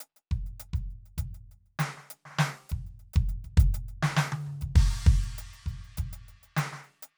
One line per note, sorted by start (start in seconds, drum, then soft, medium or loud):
0.01 closed hi-hat loud
0.17 closed hi-hat soft
0.32 kick medium
0.32 closed hi-hat soft
0.47 closed hi-hat soft
0.60 closed hi-hat loud
0.74 kick medium
0.74 closed hi-hat soft
0.91 closed hi-hat soft
1.06 closed hi-hat soft
1.19 closed hi-hat loud
1.19 kick medium
1.35 closed hi-hat soft
1.52 closed hi-hat soft
1.67 closed hi-hat soft
1.80 closed hi-hat loud
1.80 snare loud
1.98 snare soft
2.11 closed hi-hat loud
2.26 snare soft
2.31 snare soft
2.36 snare soft
2.39 snare loud
2.70 closed hi-hat loud
2.70 kick medium
2.87 closed hi-hat soft
3.00 closed hi-hat soft
3.14 closed hi-hat loud
3.14 kick loud
3.30 closed hi-hat medium
3.45 kick soft
3.45 closed hi-hat soft
3.58 closed hi-hat loud
3.58 kick loud
3.75 closed hi-hat loud
3.89 closed hi-hat soft
4.03 snare loud
4.17 snare loud
4.33 high tom loud
4.41 hi-hat pedal soft
4.47 mid tom soft
4.62 kick medium
4.62 closed hi-hat medium
4.76 kick loud
4.76 crash loud
4.92 closed hi-hat soft
5.07 kick loud
5.07 closed hi-hat soft
5.24 closed hi-hat soft
5.39 closed hi-hat loud
5.54 closed hi-hat soft
5.67 kick medium
5.67 closed hi-hat soft
5.85 closed hi-hat soft
5.98 closed hi-hat loud
5.98 kick medium
6.14 closed hi-hat loud
6.29 closed hi-hat medium
6.44 closed hi-hat medium
6.57 closed hi-hat loud
6.57 snare loud
6.73 snare medium
6.85 closed hi-hat soft
7.03 closed hi-hat loud